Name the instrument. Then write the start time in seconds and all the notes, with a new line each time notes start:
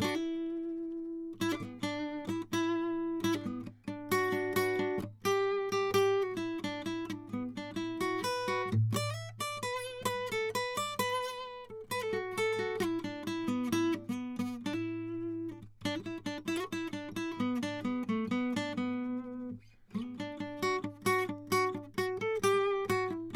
acoustic guitar
0.02 D4
0.15 E4
1.42 E4
1.52 D4
1.61 B3
1.84 D4
2.30 E4
2.54 E4
3.25 E4
3.35 D4
3.47 B3
3.88 D4
4.12 F#4
4.33 D4
4.57 F#4
4.80 D4
5.26 G4
5.73 G4
5.95 G4
6.24 F#4
6.38 E4
6.65 D4
6.87 E4
7.11 D4
7.34 B3
7.58 D4
7.77 E4
8.01 F#4
8.25 B4
8.48 F#4
8.73 A2
8.97 D5
9.11 E5
9.41 D5
9.63 B4
10.06 B4
10.33 A4
10.55 B4
10.76 D5
11.00 B4
11.71 A4
11.92 B4
12.03 A4
12.14 F#4
12.38 A4
12.60 F#4
12.81 E4
13.05 D4
13.28 E4
13.49 B3
13.73 E4
14.10 B3
14.40 B3
14.66 D4
14.78 E4
15.50 D4
15.86 D4
16.07 E4
16.27 D4
16.48 E4
16.73 E4
16.94 D4
17.17 E4
17.41 B3
17.63 D4
17.86 B3
18.09 A3
18.32 B3
18.57 D4
18.78 B3
19.96 B3
20.21 D4
20.41 D4
20.63 F#4
20.85 D4
21.07 F#4
21.30 D4
21.52 F#4
21.75 D4
21.98 F#4
22.22 A4
22.44 G4
22.90 F#4
23.12 E4